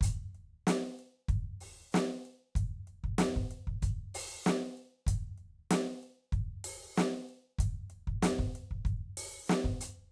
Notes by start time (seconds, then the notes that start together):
0.01 closed hi-hat, kick
0.35 closed hi-hat
0.67 closed hi-hat, snare
0.99 closed hi-hat
1.29 kick, closed hi-hat
1.61 open hi-hat
1.92 closed hi-hat, snare, hi-hat pedal
2.25 closed hi-hat
2.56 kick, closed hi-hat
2.87 closed hi-hat
3.04 kick
3.19 snare, closed hi-hat
3.36 kick
3.51 closed hi-hat
3.67 kick
3.83 closed hi-hat, kick
4.15 open hi-hat
4.45 snare, closed hi-hat, hi-hat pedal
4.77 closed hi-hat
5.07 kick, closed hi-hat
5.38 closed hi-hat
5.71 snare, closed hi-hat
6.03 closed hi-hat
6.33 kick, closed hi-hat
6.64 open hi-hat
6.96 snare, closed hi-hat, hi-hat pedal
7.29 closed hi-hat
7.59 kick, closed hi-hat
7.90 closed hi-hat
8.07 kick
8.23 closed hi-hat, snare
8.39 kick
8.55 closed hi-hat
8.71 kick
8.85 kick, closed hi-hat
9.17 open hi-hat
9.48 snare, closed hi-hat, hi-hat pedal
9.64 kick
9.81 closed hi-hat